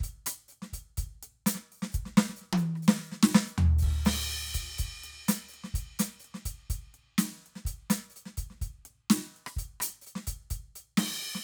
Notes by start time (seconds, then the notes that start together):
0.01 closed hi-hat, kick
0.27 closed hi-hat, cross-stick
0.49 hi-hat pedal
0.53 closed hi-hat
0.62 snare
0.73 closed hi-hat, kick
0.98 closed hi-hat, kick
1.04 kick
1.23 closed hi-hat
1.47 closed hi-hat, snare
1.56 snare
1.73 open hi-hat
1.83 snare
1.92 kick, closed hi-hat, hi-hat pedal
2.03 kick, snare
2.18 snare
2.30 snare
2.37 hi-hat pedal
2.42 snare
2.53 high tom
2.58 hi-hat pedal
2.76 cross-stick
2.83 hi-hat pedal
2.89 snare
2.99 snare
3.04 hi-hat pedal
3.12 snare
3.23 snare, hi-hat pedal
3.35 snare
3.47 snare, hi-hat pedal
3.58 floor tom
3.79 hi-hat pedal
3.83 kick, crash
4.06 snare, crash
4.32 closed hi-hat
4.47 snare
4.55 closed hi-hat, kick
4.65 snare
4.79 closed hi-hat, kick
4.86 kick
5.04 closed hi-hat
5.24 hi-hat pedal
5.29 closed hi-hat, snare
5.49 hi-hat pedal
5.54 closed hi-hat
5.64 snare
5.75 closed hi-hat, kick
6.00 closed hi-hat, snare
6.20 hi-hat pedal
6.25 closed hi-hat
6.35 snare
6.46 closed hi-hat, kick
6.70 closed hi-hat, kick
6.95 closed hi-hat
7.19 closed hi-hat, snare
7.47 closed hi-hat
7.56 snare
7.66 closed hi-hat, kick
7.91 closed hi-hat, snare
8.10 hi-hat pedal
8.17 closed hi-hat
8.26 snare
8.38 closed hi-hat, kick
8.51 snare
8.55 snare
8.59 closed hi-hat, kick, snare
8.67 kick
8.86 closed hi-hat
9.11 closed hi-hat, snare
9.28 hi-hat pedal
9.37 closed hi-hat
9.47 cross-stick
9.57 closed hi-hat, kick
9.81 closed hi-hat, cross-stick
10.02 hi-hat pedal
10.07 closed hi-hat
10.16 snare
10.28 closed hi-hat, kick
10.51 closed hi-hat, kick
10.76 closed hi-hat
10.98 snare, crash
11.20 closed hi-hat, hi-hat pedal
11.35 snare